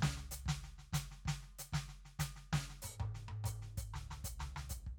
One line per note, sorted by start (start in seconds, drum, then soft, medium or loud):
0.01 kick soft
0.01 snare medium
0.17 snare soft
0.32 snare soft
0.32 hi-hat pedal medium
0.46 kick soft
0.46 snare medium
0.64 snare soft
0.79 snare soft
0.93 kick soft
0.93 snare medium
0.93 hi-hat pedal medium
1.12 snare soft
1.26 kick soft
1.26 snare medium
1.43 snare soft
1.59 snare soft
1.59 hi-hat pedal medium
1.73 kick soft
1.73 snare medium
1.89 snare soft
2.05 snare soft
2.19 kick soft
2.19 snare medium
2.19 hi-hat pedal medium
2.36 snare soft
2.53 kick soft
2.53 snare medium
2.70 snare soft
2.82 hi-hat pedal medium
2.82 high tom medium
3.00 kick soft
3.00 high tom medium
3.15 snare soft
3.29 high tom medium
3.44 kick soft
3.44 hi-hat pedal medium
3.44 high tom medium
3.62 snare soft
3.78 kick medium
3.78 hi-hat pedal medium
3.94 snare soft
3.94 floor tom medium
4.11 snare soft
4.11 floor tom medium
4.25 kick soft
4.25 hi-hat pedal medium
4.40 snare soft
4.40 floor tom medium
4.57 snare soft
4.57 floor tom medium
4.70 kick soft
4.70 hi-hat pedal medium
4.87 kick soft